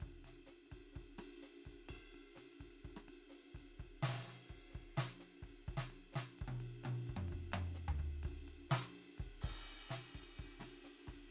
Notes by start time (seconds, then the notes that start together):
0.01 kick, ride
0.08 kick
0.24 snare, ride
0.26 snare
0.47 hi-hat pedal, ride
0.72 kick, ride
0.78 kick
0.93 kick, hi-hat pedal, ride
1.02 kick
1.19 cross-stick, ride
1.43 hi-hat pedal, ride
1.66 kick, ride
1.72 kick
1.89 kick, hi-hat pedal, ride bell
1.96 kick
2.15 ride
2.36 snare, hi-hat pedal, ride
2.61 kick, ride
2.66 kick
2.85 kick, ride
2.90 kick
2.97 cross-stick, snare
3.09 ride
3.30 hi-hat pedal, ride
3.55 kick, ride
3.60 kick
3.74 hi-hat pedal
3.80 kick, ride
3.85 kick
4.03 snare, ride
4.09 snare
4.14 snare
4.18 snare
4.22 snare, hi-hat pedal
4.25 snare, ride
4.28 snare
4.32 snare
4.35 snare
4.50 kick, ride
4.56 kick
4.71 hi-hat pedal, ride
4.75 kick
4.81 kick
4.98 snare, ride
5.20 hi-hat pedal, ride
5.29 snare
5.43 kick, snare, ride
5.48 kick, snare
5.69 kick, ride
5.75 kick, snare
5.91 ride
6.13 snare, hi-hat pedal, ride
6.39 kick, ride
6.48 kick, high tom
6.61 ride
6.84 hi-hat pedal, high tom, ride
7.08 kick, ride
7.15 kick, mid tom
7.27 hi-hat pedal, ride
7.33 kick
7.39 kick
7.53 mid tom, ride
7.75 hi-hat pedal, ride
7.89 floor tom
8.00 kick, ride
8.06 kick
8.24 kick, ride
8.32 kick
8.49 ride
8.70 snare, hi-hat pedal, ride
8.96 ride
9.02 snare
9.06 snare
9.19 kick, ride
9.26 kick
9.42 kick, crash
9.90 snare, hi-hat pedal, ride
10.15 kick, ride
10.20 kick
10.36 kick, hi-hat pedal, ride
10.45 kick
10.60 cross-stick, snare, ride
10.85 hi-hat pedal, ride
11.08 kick, cross-stick, ride
11.14 kick